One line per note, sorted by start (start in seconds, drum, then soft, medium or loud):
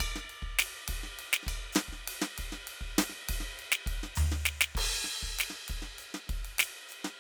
0.01 kick soft
0.01 ride bell loud
0.08 kick soft
0.17 snare soft
0.25 snare soft
0.30 ride medium
0.43 kick soft
0.49 kick soft
0.60 snare loud
0.60 hi-hat pedal medium
0.60 ride loud
0.89 kick soft
0.89 ride loud
0.96 kick soft
1.04 snare soft
1.20 ride medium
1.34 snare loud
1.44 kick soft
1.44 snare soft
1.49 ride bell loud
1.54 kick soft
1.73 snare loud
1.73 hi-hat pedal medium
1.73 ride loud
1.89 kick soft
1.93 snare soft
2.08 ride loud
2.23 snare medium
2.39 kick soft
2.39 hi-hat pedal soft
2.39 ride medium
2.53 snare soft
2.68 ride medium
2.82 kick soft
2.99 snare loud
2.99 hi-hat pedal medium
2.99 ride loud
3.10 snare soft
3.30 kick soft
3.30 ride loud
3.38 kick soft
3.38 snare soft
3.59 hi-hat pedal soft
3.59 ride medium
3.73 snare loud
3.87 kick medium
3.87 ride medium
3.95 kick soft
3.98 kick soft
4.04 snare soft
4.16 floor tom loud
4.16 hi-hat pedal medium
4.33 snare medium
4.46 snare medium
4.62 snare loud
4.76 kick medium
4.76 crash medium
4.86 kick soft
4.96 snare soft
5.05 snare soft
5.24 kick soft
5.29 kick soft
5.39 kick soft
5.39 snare medium
5.39 hi-hat pedal soft
5.39 ride loud
5.51 snare soft
5.69 kick soft
5.69 ride medium
5.77 kick soft
5.83 snare soft
5.99 hi-hat pedal soft
5.99 ride medium
6.15 snare medium
6.28 kick soft
6.28 snare soft
6.28 ride medium
6.37 kick soft
6.46 ride medium
6.59 snare loud
6.59 hi-hat pedal medium
6.59 ride loud
6.90 hi-hat pedal soft
6.90 ride medium
7.05 snare medium